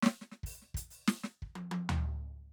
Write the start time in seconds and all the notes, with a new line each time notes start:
0.03 snare
0.06 snare
0.21 snare
0.32 snare
0.43 open hi-hat, kick
0.54 hi-hat pedal
0.62 snare
0.74 closed hi-hat, kick
0.91 hi-hat pedal
1.08 snare
1.24 snare
1.42 kick
1.55 closed hi-hat, high tom
1.71 high tom
1.89 floor tom